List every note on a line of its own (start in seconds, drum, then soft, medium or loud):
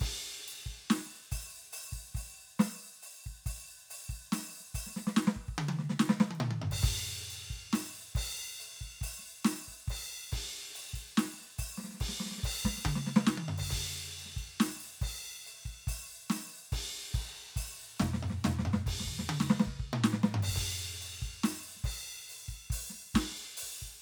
0.01 kick medium
0.01 snare soft
0.01 ride loud
0.49 open hi-hat medium
0.67 kick soft
0.67 open hi-hat soft
0.91 open hi-hat loud
0.91 snare loud
1.12 open hi-hat soft
1.33 open hi-hat loud
1.33 kick medium
1.52 open hi-hat soft
1.74 open hi-hat loud
1.93 kick soft
1.93 open hi-hat soft
2.16 open hi-hat loud
2.16 kick medium
2.16 snare soft
2.38 open hi-hat soft
2.60 open hi-hat loud
2.60 snare loud
2.66 snare soft
2.81 open hi-hat soft
3.04 open hi-hat loud
3.25 kick soft
3.25 open hi-hat soft
3.47 open hi-hat loud
3.47 kick medium
3.70 open hi-hat soft
3.91 open hi-hat loud
4.10 kick soft
4.10 open hi-hat soft
4.33 open hi-hat loud
4.33 snare loud
4.54 open hi-hat soft
4.61 snare soft
4.76 open hi-hat loud
4.76 kick soft
4.87 snare soft
4.97 snare medium
5.08 snare medium
5.18 snare loud
5.28 snare loud
5.37 kick soft
5.49 kick soft
5.59 high tom loud
5.70 high tom loud
5.80 snare medium
5.91 snare medium
6.01 snare loud
6.10 snare loud
6.21 snare loud
6.32 closed hi-hat soft
6.32 high tom loud
6.36 crash soft
6.41 mid tom loud
6.52 high tom loud
6.63 floor tom loud
6.72 kick soft
6.72 crash loud
6.83 kick loud
6.83 ride loud
7.31 open hi-hat medium
7.51 kick soft
7.51 open hi-hat soft
7.74 open hi-hat loud
7.74 snare loud
7.96 open hi-hat soft
8.16 kick medium
8.16 crash loud
8.38 open hi-hat soft
8.61 open hi-hat medium
8.82 kick soft
8.82 open hi-hat soft
9.02 open hi-hat loud
9.02 kick medium
9.20 snare soft
9.46 open hi-hat loud
9.46 snare loud
9.69 kick soft
9.69 open hi-hat soft
9.89 kick medium
9.89 crash loud
10.11 open hi-hat soft
10.33 kick medium
10.33 ride loud
10.76 open hi-hat loud
10.94 kick soft
10.94 open hi-hat medium
11.18 open hi-hat loud
11.18 snare loud
11.38 open hi-hat soft
11.42 snare soft
11.49 snare soft
11.59 open hi-hat loud
11.59 kick medium
11.79 snare medium
11.85 snare soft
11.89 snare soft
12.01 kick medium
12.01 ride loud
12.10 snare soft
12.21 snare medium
12.27 snare soft
12.32 snare soft
12.39 snare soft
12.44 kick medium
12.44 crash loud
12.66 kick medium
12.66 snare medium
12.78 snare soft
12.86 kick medium
12.86 high tom loud
12.97 snare medium
13.08 snare medium
13.17 snare loud
13.26 kick soft
13.26 snare loud
13.39 high tom loud
13.49 floor tom loud
13.59 kick soft
13.59 crash loud
13.71 kick medium
13.71 ride loud
14.19 open hi-hat medium
14.26 snare soft
14.38 kick soft
14.38 open hi-hat soft
14.61 open hi-hat loud
14.61 snare loud
14.81 open hi-hat medium
15.03 kick medium
15.03 crash loud
15.47 open hi-hat medium
15.66 kick soft
15.66 open hi-hat soft
15.88 open hi-hat loud
15.88 kick medium
16.10 open hi-hat soft
16.31 open hi-hat loud
16.31 snare loud
16.51 open hi-hat medium
16.73 kick medium
16.73 ride loud
17.15 kick medium
17.15 crash medium
17.57 open hi-hat loud
17.57 kick medium
17.81 mid tom soft
18.01 kick soft
18.01 snare loud
18.01 floor tom loud
18.15 snare medium
18.22 kick soft
18.22 floor tom medium
18.31 snare medium
18.45 snare loud
18.45 floor tom loud
18.60 snare medium
18.64 kick soft
18.64 floor tom loud
18.74 snare medium
18.87 kick medium
18.87 ride loud
19.01 snare soft
19.06 kick soft
19.06 high tom medium
19.20 snare medium
19.29 hi-hat pedal soft
19.29 high tom loud
19.41 snare loud
19.51 snare loud
19.68 kick soft
19.81 kick soft
19.94 mid tom loud
20.05 snare loud
20.14 snare medium
20.24 snare loud
20.35 floor tom loud
20.44 crash loud
20.49 kick soft
20.56 kick medium
20.56 ride loud
21.02 open hi-hat medium
21.23 kick medium
21.23 open hi-hat soft
21.45 open hi-hat loud
21.45 snare loud
21.64 open hi-hat soft
21.77 snare soft
21.81 snare soft
21.85 kick medium
21.85 snare soft
21.85 crash loud
22.30 open hi-hat medium
22.49 kick soft
22.49 open hi-hat soft
22.71 open hi-hat loud
22.71 kick medium
22.91 snare soft
22.91 open hi-hat soft
23.16 kick medium
23.16 snare loud
23.16 ride loud
23.38 open hi-hat soft
23.58 open hi-hat loud
23.64 kick soft
23.79 kick soft
23.79 open hi-hat medium